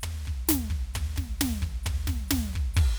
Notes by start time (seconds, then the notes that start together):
0.01 floor tom, hi-hat pedal
0.26 kick, floor tom
0.48 snare, floor tom, hi-hat pedal
0.70 kick, floor tom
0.94 kick, floor tom, hi-hat pedal
1.16 kick, snare, floor tom
1.38 kick, snare, floor tom, hi-hat pedal
1.62 kick, floor tom
1.84 kick, floor tom, hi-hat pedal
2.08 kick, snare, floor tom
2.28 snare, floor tom, hi-hat pedal
2.33 kick
2.54 kick, floor tom
2.74 kick, hi-hat pedal, crash